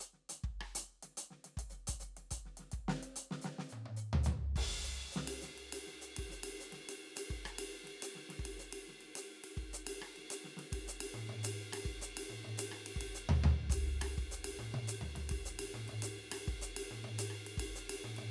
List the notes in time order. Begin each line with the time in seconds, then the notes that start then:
0.01 closed hi-hat
0.14 snare
0.30 closed hi-hat, snare
0.44 kick
0.61 cross-stick
0.76 closed hi-hat
1.03 snare, closed hi-hat
1.18 closed hi-hat
1.31 snare
1.45 snare, closed hi-hat
1.58 kick, open hi-hat
1.71 snare, hi-hat pedal
1.88 open hi-hat, kick
2.01 snare, hi-hat pedal
2.17 snare, closed hi-hat
2.31 closed hi-hat, kick
2.46 snare
2.58 snare, closed hi-hat
2.72 kick, closed hi-hat
2.89 snare
3.03 closed hi-hat
3.17 closed hi-hat
3.32 snare
3.42 snare, hi-hat pedal
3.59 snare
3.70 hi-hat pedal, high tom
3.86 high tom
3.97 hi-hat pedal
4.14 floor tom
4.24 floor tom, hi-hat pedal
4.56 kick, crash, ride
4.84 hi-hat pedal
5.13 snare, hi-hat pedal
5.28 ride
5.42 snare, hi-hat pedal
5.56 snare, ride
5.73 hi-hat pedal, ride
5.87 snare
6.02 hi-hat pedal, ride
6.17 kick, ride
6.30 snare, hi-hat pedal
6.44 ride
6.61 hi-hat pedal
6.73 snare, ride
6.90 hi-hat pedal, ride
7.17 hi-hat pedal, ride
7.31 kick
7.46 cross-stick, hi-hat pedal
7.59 ride
7.84 snare, ride
8.03 hi-hat pedal, ride
8.16 snare
8.30 snare, ride
8.40 kick
8.46 ride
8.59 snare, hi-hat pedal
8.73 ride
8.89 snare
9.01 snare, ride
9.16 hi-hat pedal, ride
9.45 ride
9.58 kick
9.74 hi-hat pedal
9.87 ride
10.02 cross-stick
10.17 snare, ride
10.31 hi-hat pedal, ride
10.45 snare
10.57 snare, ride
10.73 kick, ride
10.89 hi-hat pedal
11.01 ride
11.15 high tom
11.30 high tom
11.44 hi-hat pedal, ride
11.73 cross-stick, ride
11.86 kick
12.02 hi-hat pedal
12.18 ride
12.30 high tom
12.45 high tom
12.58 hi-hat pedal, ride
12.72 cross-stick
12.87 ride
12.97 kick
13.02 ride
13.15 hi-hat pedal
13.30 floor tom
13.44 floor tom
13.70 kick, hi-hat pedal, ride
14.02 cross-stick, ride
14.18 kick
14.32 hi-hat pedal
14.45 ride
14.60 high tom
14.75 high tom
14.88 hi-hat pedal, ride
15.02 floor tom
15.16 floor tom, ride
15.30 kick, ride
15.46 hi-hat pedal
15.60 ride
15.75 high tom
15.89 high tom, ride
16.03 hi-hat pedal, ride
16.32 cross-stick, ride
16.48 kick
16.62 hi-hat pedal
16.77 ride
16.92 high tom
17.05 high tom
17.19 hi-hat pedal, ride
17.31 cross-stick
17.47 ride
17.58 kick, ride
17.76 hi-hat pedal
17.90 ride
18.05 high tom
18.17 high tom, ride